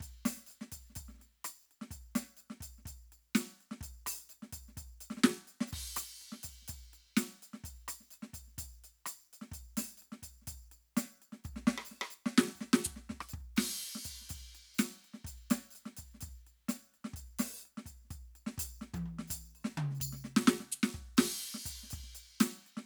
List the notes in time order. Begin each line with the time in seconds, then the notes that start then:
0.01 kick, percussion
0.08 kick
0.26 snare, percussion
0.38 snare
0.47 percussion
0.51 percussion
0.62 snare
0.73 kick, percussion
0.90 snare
0.96 kick, percussion
1.09 snare
1.15 snare
1.19 snare, percussion
1.45 cross-stick, percussion
1.62 percussion
1.72 percussion
1.82 snare
1.91 kick, percussion
2.16 snare, percussion
2.38 percussion
2.41 percussion
2.51 snare
2.61 kick, snare, percussion
2.79 snare
2.86 kick, snare, percussion
2.92 kick
3.13 percussion
3.36 snare, percussion
3.61 percussion
3.72 snare
3.82 kick, percussion
3.89 kick
4.07 cross-stick, percussion
4.30 percussion
4.34 percussion
4.43 snare
4.53 kick, percussion
4.69 snare
4.76 kick, snare, percussion
4.79 snare
5.01 percussion
5.11 snare
5.18 snare
5.24 snare
5.39 snare
5.48 percussion
5.61 snare
5.68 percussion
5.73 kick, crash
5.80 kick
5.82 kick
5.97 cross-stick, percussion
6.22 percussion
6.33 snare
6.44 kick, percussion
6.62 snare
6.69 kick, percussion
6.94 percussion
7.18 snare, percussion
7.43 percussion
7.54 snare
7.64 kick, percussion
7.89 cross-stick, percussion
8.01 snare
8.11 percussion
8.14 percussion
8.23 snare
8.34 kick, percussion
8.48 snare
8.59 kick, percussion
8.64 kick
8.85 percussion
9.07 cross-stick, percussion
9.34 percussion
9.42 snare
9.52 kick, snare, percussion
9.78 snare, percussion
9.98 percussion
10.03 percussion
10.13 snare
10.23 kick, percussion
10.42 snare
10.48 kick, percussion
10.54 kick
10.72 percussion
10.98 snare, percussion
11.06 snare
11.23 percussion
11.33 snare
11.45 kick, percussion
11.54 kick, snare
11.66 kick, snare
11.78 high tom
11.86 percussion
11.92 snare
12.02 high tom
12.11 percussion
12.27 snare
12.38 snare
12.48 snare
12.56 kick, percussion
12.62 snare
12.74 snare, percussion
12.85 kick, floor tom
12.97 snare
13.10 kick, snare
13.21 cross-stick
13.30 percussion
13.34 kick
13.41 kick
13.57 snare, crash
13.74 percussion
13.83 percussion
13.96 snare
14.05 kick, percussion
14.22 snare
14.30 kick, percussion
14.37 kick
14.56 percussion
14.75 percussion
14.79 snare, percussion
14.97 percussion
15.05 percussion
15.14 snare
15.25 kick, percussion
15.51 snare, percussion
15.71 percussion
15.76 percussion
15.86 snare
15.95 kick, snare, percussion
16.15 snare
16.21 kick, snare, percussion
16.27 kick, snare
16.29 snare
16.47 percussion
16.69 snare, percussion
16.95 percussion
17.05 snare
17.14 kick, percussion
17.20 kick
17.39 snare, percussion
17.60 percussion
17.66 percussion
17.78 snare
17.86 kick, percussion
18.05 snare
18.11 kick, percussion
18.36 percussion
18.47 snare
18.59 kick, percussion
18.65 kick
18.82 snare
18.94 kick, high tom, percussion
19.01 kick
19.07 high tom
19.19 snare
19.28 kick, percussion
19.31 percussion
19.56 percussion
19.65 snare
19.74 kick, mid tom
19.91 snare
19.96 percussion
20.01 kick, percussion
20.13 snare
20.25 snare
20.37 snare
20.45 kick, snare
20.61 snare
20.73 floor tom
20.84 snare
20.95 kick
21.03 kick
21.18 snare, crash
21.41 percussion
21.55 snare
21.65 kick, percussion
21.66 percussion
21.84 snare
21.91 kick, percussion
22.00 kick, snare
22.16 percussion
22.41 snare, percussion
22.67 percussion
22.78 snare